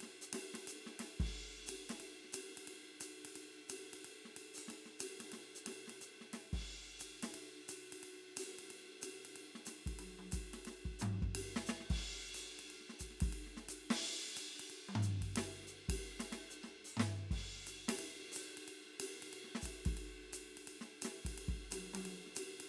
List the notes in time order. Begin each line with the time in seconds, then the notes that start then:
0.01 snare, ride
0.22 hi-hat pedal
0.33 snare, ride
0.54 snare, ride
0.68 hi-hat pedal, ride
0.87 snare
1.00 snare, ride
1.20 kick, ride
1.59 snare
1.67 hi-hat pedal, ride
1.89 snare, hi-hat pedal, ride
2.00 ride
2.24 snare
2.33 hi-hat pedal, ride
2.58 ride
2.68 ride
3.01 hi-hat pedal, ride
3.25 ride
3.36 ride
3.69 hi-hat pedal, ride
3.94 ride
4.05 ride
4.26 snare
4.37 ride
4.55 hi-hat pedal
4.59 ride
4.68 snare, ride
4.86 snare
5.00 hi-hat pedal, ride
5.20 snare, ride
5.32 snare, ride
5.56 hi-hat pedal
5.67 snare, ride
5.88 snare, ride
6.02 hi-hat pedal, ride
6.21 snare
6.34 snare, ride
6.53 kick, ride
7.00 hi-hat pedal, ride
7.23 snare, ride
7.35 ride
7.69 hi-hat pedal, ride
7.93 ride
8.03 ride
8.37 hi-hat pedal, ride
8.57 hi-hat pedal, ride
8.71 ride
9.02 hi-hat pedal, ride
9.25 ride
9.36 ride
9.55 snare
9.66 snare, hi-hat pedal, ride
9.87 kick, ride
9.99 high tom, ride
10.07 hi-hat pedal
10.19 high tom
10.32 kick, hi-hat pedal, ride
10.54 snare, ride
10.66 snare, ride
10.86 kick
11.00 floor tom, hi-hat pedal, high tom
11.23 kick
11.35 ride
11.57 snare
11.67 snare, hi-hat pedal
11.81 snare
11.91 kick, ride
12.35 hi-hat pedal, ride
12.60 ride
12.71 ride
12.81 snare
12.90 snare
13.00 kick, hi-hat pedal, ride
13.11 snare
13.21 kick, ride
13.33 ride
13.47 snare
13.57 snare
13.69 hi-hat pedal, ride
13.91 snare, ride
14.28 snare
14.36 hi-hat pedal, ride
14.60 ride
14.70 ride
14.78 hi-hat pedal
14.89 high tom
14.96 floor tom
15.03 hi-hat pedal
15.22 kick, ride
15.36 snare, ride
15.44 hi-hat pedal
15.63 snare
15.68 hi-hat pedal
15.89 kick, ride
16.20 snare, ride
16.33 snare, ride
16.51 hi-hat pedal
16.64 snare, floor tom
16.85 hi-hat pedal
16.97 snare, floor tom
17.08 hi-hat pedal
17.19 snare
17.31 kick, ride
17.58 snare
17.67 hi-hat pedal, ride
17.89 snare, ride
17.99 ride
18.32 hi-hat pedal
18.37 ride
18.58 ride
18.68 ride
18.86 snare
19.00 hi-hat pedal, ride
19.23 ride
19.33 ride
19.45 snare
19.55 snare
19.62 kick, hi-hat pedal, ride
19.86 kick, ride
19.97 ride
20.33 hi-hat pedal, ride
20.58 ride
20.68 ride
20.81 snare
21.02 snare, hi-hat pedal, ride
21.25 kick, ride
21.38 ride
21.49 kick
21.71 hi-hat pedal, high tom, ride
21.94 high tom, ride
22.06 ride
22.27 snare
22.36 hi-hat pedal, ride
22.61 ride